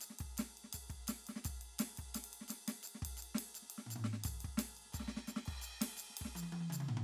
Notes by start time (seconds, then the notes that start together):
0.01 ride, percussion
0.10 snare
0.19 kick, ride
0.37 snare, ride, percussion
0.57 ride
0.64 snare
0.73 kick, ride, percussion
0.90 kick, ride
1.07 snare, ride, percussion
1.27 snare, ride
1.36 snare
1.44 kick, ride, percussion
1.61 ride
1.79 snare, ride, percussion
1.98 kick, ride
2.15 snare, ride, percussion
2.24 ride
2.33 ride
2.41 snare
2.48 snare, ride, percussion
2.68 snare, ride
2.83 percussion
2.88 ride
2.95 snare
3.02 kick, ride
3.17 percussion
3.23 ride
3.35 snare, ride
3.55 ride, percussion
3.62 snare
3.70 ride
3.78 snare
3.87 floor tom
3.91 percussion
3.96 floor tom
4.04 snare
4.13 snare
4.24 kick, ride, percussion
4.41 kick, ride
4.58 snare, ride, percussion
4.77 ride
4.85 snare
4.93 kick, percussion, ride
5.00 snare
5.08 snare
5.17 snare
5.28 snare, percussion
5.36 snare
5.46 kick, ride
5.62 ride, percussion
5.81 snare, ride
5.97 ride, percussion
6.10 snare
6.17 ride
6.21 kick, snare
6.35 high tom, percussion
6.43 high tom
6.52 high tom
6.61 high tom
6.70 mid tom, percussion
6.80 mid tom
6.89 floor tom
6.97 floor tom